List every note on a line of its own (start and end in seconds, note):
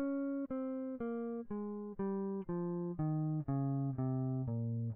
0.00 0.48 C#4
0.52 1.01 C4
1.01 1.45 A#3
1.52 1.96 G#3
2.00 2.45 G3
2.50 2.96 F3
3.00 3.44 D#3
3.50 3.99 C#3
4.00 4.53 C3
4.50 4.95 A#2